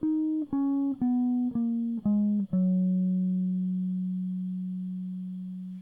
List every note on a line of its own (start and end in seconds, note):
0.03 0.46 D#4
0.53 0.96 C#4
1.02 1.52 B3
1.56 2.02 A#3
2.06 2.47 G#3
2.54 5.82 F#3